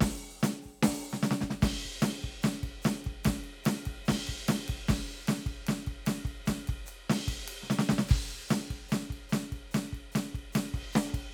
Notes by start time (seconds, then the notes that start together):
0.01 open hi-hat, kick, snare
0.22 open hi-hat
0.40 closed hi-hat, snare, hi-hat pedal
0.62 open hi-hat, kick
0.83 open hi-hat, snare
0.88 kick
1.02 open hi-hat
1.13 snare
1.23 snare, hi-hat pedal
1.31 snare
1.41 kick, snare
1.50 snare
1.62 kick, snare, hi-hat pedal, ride
1.80 ride
1.85 kick
2.01 snare, hi-hat pedal, ride
2.23 kick, ride
2.42 snare, hi-hat pedal, ride
2.63 kick, ride
2.82 snare, hi-hat pedal, ride
3.05 kick, ride
3.24 kick, snare, hi-hat pedal, ride
3.37 kick
3.44 ride
3.64 snare, hi-hat pedal, ride
3.86 kick, ride
4.06 snare, hi-hat pedal, ride
4.11 kick
4.28 kick, ride
4.48 snare, hi-hat pedal, ride
4.68 kick, ride
4.88 kick, snare, hi-hat pedal, crash
5.28 snare, hi-hat pedal, ride
5.34 snare
5.47 kick, ride
5.67 snare, hi-hat pedal, ride
5.87 kick, ride
6.06 snare, hi-hat pedal, ride
6.25 kick, ride
6.46 kick, snare, hi-hat pedal, ride
6.68 kick, ride
6.86 hi-hat pedal, ride
7.10 snare, ride
7.28 kick, hi-hat pedal, ride
7.48 ride
7.63 snare
7.70 snare, hi-hat pedal
7.79 snare
7.92 kick
7.99 snare
8.08 kick, hi-hat pedal, crash
8.34 kick
8.49 snare, hi-hat pedal, ride
8.71 kick, ride
8.89 snare, hi-hat pedal, ride
9.10 kick, ride
9.30 snare, hi-hat pedal
9.34 ride
9.52 kick, ride
9.72 snare, hi-hat pedal, ride
9.93 kick, ride
10.12 snare, hi-hat pedal
10.16 ride
10.35 kick, ride
10.53 snare, hi-hat pedal, ride
10.74 kick, ride
10.83 kick
10.93 snare, hi-hat pedal
11.14 kick, ride